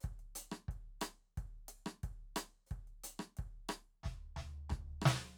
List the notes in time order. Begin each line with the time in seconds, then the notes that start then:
0.01 kick, closed hi-hat, hi-hat pedal
0.20 closed hi-hat
0.36 closed hi-hat
0.52 cross-stick
0.69 kick, closed hi-hat
1.02 closed hi-hat, cross-stick
1.38 kick, closed hi-hat
1.69 closed hi-hat
1.87 cross-stick
2.04 kick, closed hi-hat
2.37 closed hi-hat, cross-stick
2.67 hi-hat pedal
2.71 kick, closed hi-hat
2.88 closed hi-hat
3.04 closed hi-hat
3.20 cross-stick
3.37 kick, closed hi-hat
3.69 cross-stick, open hi-hat
4.04 kick, snare, floor tom
4.37 snare, floor tom
4.70 kick, cross-stick, floor tom
5.02 cross-stick, snare